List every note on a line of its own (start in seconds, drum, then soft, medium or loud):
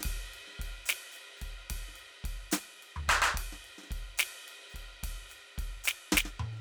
0.01 snare soft
0.01 ride loud
0.06 kick soft
0.12 kick soft
0.34 ride soft
0.48 snare soft
0.53 snare soft
0.60 kick soft
0.60 ride medium
0.66 kick soft
0.86 snare medium
0.86 hi-hat pedal medium
0.86 ride loud
1.12 hi-hat pedal soft
1.17 ride soft
1.37 snare soft
1.37 hi-hat pedal soft
1.42 kick soft
1.42 ride soft
1.71 kick soft
1.71 ride medium
1.77 kick soft
1.89 snare soft
1.95 snare soft
1.95 hi-hat pedal soft
1.95 ride soft
2.25 kick soft
2.25 ride medium
2.31 kick soft
2.52 snare medium
2.52 hi-hat pedal loud
2.52 ride medium
2.83 ride soft
2.97 floor tom medium
3.09 kick soft
3.09 percussion loud
3.22 percussion loud
3.35 kick soft
3.35 ride loud
3.41 kick soft
3.53 snare soft
3.65 ride soft
3.79 snare soft
3.84 snare soft
3.88 kick soft
3.88 snare soft
3.93 ride medium
3.98 kick soft
4.18 snare loud
4.18 hi-hat pedal medium
4.18 ride loud
4.43 hi-hat pedal soft
4.49 ride soft
4.70 hi-hat pedal soft
4.75 kick soft
4.75 ride soft
5.04 kick soft
5.04 ride medium
5.10 kick soft
5.30 hi-hat pedal soft
5.30 ride soft
5.59 kick soft
5.59 ride medium
5.65 kick soft
5.85 snare loud
5.85 hi-hat pedal medium
5.85 ride medium
6.13 kick soft
6.13 snare loud
6.18 snare loud
6.26 snare soft
6.40 mid tom medium
6.53 snare soft
6.58 snare soft